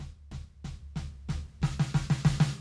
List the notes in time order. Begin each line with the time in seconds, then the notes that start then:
0.00 kick, snare, floor tom
0.31 kick, snare, floor tom
0.64 kick, snare, floor tom
0.96 kick, snare, floor tom
1.29 kick, snare, floor tom
1.62 kick, snare
1.79 snare
1.94 kick, snare
2.10 snare
2.25 kick, snare
2.40 snare